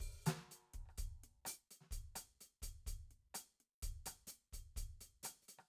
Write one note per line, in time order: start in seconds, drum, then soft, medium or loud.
0.01 open hi-hat medium
0.01 kick soft
0.26 closed hi-hat medium
0.26 snare medium
0.51 closed hi-hat soft
0.74 kick soft
0.74 closed hi-hat soft
0.86 cross-stick soft
0.89 cross-stick soft
0.98 closed hi-hat medium
0.98 kick soft
1.24 closed hi-hat soft
1.45 open hi-hat medium
1.45 cross-stick soft
1.45 hi-hat pedal medium
1.71 closed hi-hat soft
1.80 snare soft
1.91 closed hi-hat medium
1.91 kick soft
2.15 closed hi-hat medium
2.15 cross-stick soft
2.41 closed hi-hat soft
2.62 closed hi-hat medium
2.62 kick soft
2.86 closed hi-hat medium
2.86 kick soft
3.11 closed hi-hat soft
3.34 closed hi-hat medium
3.34 cross-stick soft
3.34 snare soft
3.60 closed hi-hat soft
3.82 closed hi-hat medium
3.82 kick soft
4.06 closed hi-hat medium
4.06 cross-stick soft
4.06 snare soft
4.27 hi-hat pedal medium
4.31 closed hi-hat soft
4.52 closed hi-hat soft
4.52 kick soft
4.76 closed hi-hat medium
4.76 kick soft
5.01 closed hi-hat soft
5.23 closed hi-hat medium
5.23 cross-stick soft
5.23 snare soft
5.23 hi-hat pedal medium
5.42 hi-hat pedal soft
5.48 closed hi-hat soft
5.57 cross-stick soft
5.57 snare soft